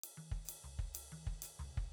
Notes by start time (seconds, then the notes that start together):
0.03 ride
0.17 high tom
0.31 kick
0.45 hi-hat pedal, ride
0.64 floor tom
0.79 kick
0.94 hi-hat pedal, ride
1.12 high tom
1.27 kick
1.42 hi-hat pedal, ride
1.59 floor tom
1.77 kick